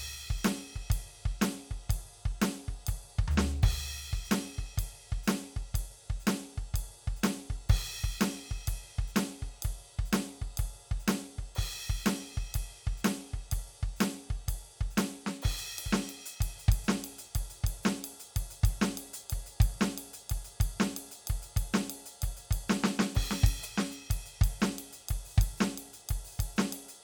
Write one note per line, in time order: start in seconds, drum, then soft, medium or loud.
0.31 kick medium
0.38 hi-hat pedal soft
0.45 snare loud
0.45 ride loud
0.76 kick soft
0.91 kick loud
0.91 ride loud
1.26 kick medium
1.42 snare loud
1.42 ride loud
1.71 kick medium
1.90 kick medium
1.90 ride loud
2.26 kick medium
2.42 snare loud
2.42 ride loud
2.69 kick medium
2.87 kick medium
2.87 ride loud
3.19 kick medium
3.28 floor tom loud
3.28 hi-hat pedal medium
3.38 snare loud
3.64 kick loud
3.64 crash loud
4.14 kick medium
4.25 hi-hat pedal medium
4.32 snare loud
4.32 ride loud
4.59 kick medium
4.78 kick medium
4.78 ride loud
5.13 kick medium
5.24 hi-hat pedal soft
5.28 snare loud
5.28 ride loud
5.57 kick medium
5.75 kick medium
5.75 ride loud
6.10 kick medium
6.21 hi-hat pedal soft
6.28 snare loud
6.28 ride loud
6.58 kick medium
6.75 kick medium
6.75 ride loud
7.08 kick medium
7.17 hi-hat pedal soft
7.24 snare loud
7.24 ride loud
7.51 kick medium
7.70 kick loud
7.70 crash loud
8.04 kick medium
8.12 hi-hat pedal soft
8.21 snare loud
8.21 ride loud
8.52 kick medium
8.68 kick medium
8.68 ride loud
8.99 kick medium
9.08 hi-hat pedal soft
9.17 snare loud
9.17 ride loud
9.43 kick medium
9.63 kick medium
9.63 ride loud
9.99 kick medium
10.06 hi-hat pedal soft
10.13 snare loud
10.13 ride loud
10.42 kick medium
10.58 kick medium
10.58 ride loud
10.92 kick medium
11.00 hi-hat pedal soft
11.08 snare loud
11.08 ride loud
11.39 kick medium
11.56 kick medium
11.56 crash loud
11.90 kick medium
12.00 hi-hat pedal soft
12.07 snare loud
12.07 ride loud
12.38 kick medium
12.55 kick medium
12.55 ride loud
12.88 kick medium
12.98 hi-hat pedal soft
13.05 snare loud
13.05 ride loud
13.34 kick medium
13.52 kick medium
13.52 ride loud
13.83 kick medium
13.97 hi-hat pedal soft
14.01 snare loud
14.01 ride loud
14.31 kick medium
14.49 kick medium
14.49 ride loud
14.81 kick medium
14.91 hi-hat pedal soft
14.98 snare loud
14.98 ride loud
15.27 snare medium
15.43 kick medium
15.43 crash loud
15.59 closed hi-hat medium
15.79 ride loud
15.87 kick soft
15.93 snare loud
16.10 ride medium
16.26 closed hi-hat loud
16.41 kick medium
16.41 ride loud
16.60 closed hi-hat medium
16.69 kick loud
16.69 ride loud
16.85 hi-hat pedal medium
16.89 snare loud
17.05 ride loud
17.19 closed hi-hat medium
17.36 kick medium
17.36 ride loud
17.51 open hi-hat medium
17.64 kick medium
17.64 ride loud
17.84 snare loud
17.84 hi-hat pedal medium
18.05 ride loud
18.20 closed hi-hat medium
18.37 kick medium
18.37 ride loud
18.51 closed hi-hat medium
18.64 kick loud
18.64 ride loud
18.82 snare loud
18.82 hi-hat pedal medium
18.98 ride loud
19.14 closed hi-hat loud
19.31 kick medium
19.31 ride loud
19.47 closed hi-hat medium
19.61 kick loud
19.61 ride loud
19.82 snare loud
19.82 hi-hat pedal medium
19.98 ride loud
20.14 closed hi-hat medium
20.30 kick medium
20.30 ride loud
20.45 closed hi-hat medium
20.61 kick loud
20.61 ride loud
20.81 snare loud
20.81 hi-hat pedal medium
20.97 ride loud
21.12 closed hi-hat medium
21.28 kick medium
21.28 ride loud
21.43 closed hi-hat medium
21.57 kick medium
21.57 ride loud
21.74 snare loud
21.74 hi-hat pedal medium
21.90 ride loud
22.06 closed hi-hat medium
22.23 kick medium
22.23 ride loud
22.37 closed hi-hat medium
22.51 kick medium
22.51 ride loud
22.69 snare loud
22.69 hi-hat pedal medium
22.84 snare loud
23.00 snare loud
23.16 kick loud
23.16 crash loud
23.31 snare medium
23.44 kick loud
23.44 ride loud
23.64 open hi-hat loud
23.64 hi-hat pedal medium
23.78 snare loud
23.92 closed hi-hat medium
24.11 kick medium
24.11 ride loud
24.26 closed hi-hat medium
24.42 kick loud
24.42 ride loud
24.61 snare loud
24.61 hi-hat pedal medium
24.79 ride loud
24.93 closed hi-hat medium
25.09 kick medium
25.09 ride loud
25.26 open hi-hat medium
25.38 kick loud
25.38 ride loud
25.58 snare loud
25.58 hi-hat pedal medium
25.78 ride loud
25.94 closed hi-hat medium
26.10 kick medium
26.10 ride loud
26.25 open hi-hat medium
26.40 kick medium
26.40 ride loud
26.57 snare loud
26.57 hi-hat pedal medium
26.73 ride loud
26.89 closed hi-hat medium